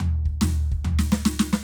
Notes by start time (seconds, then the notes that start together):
0.01 floor tom
0.26 kick
0.42 snare, floor tom
0.72 kick
0.85 floor tom
0.99 snare
1.13 snare
1.26 snare
1.40 snare
1.53 snare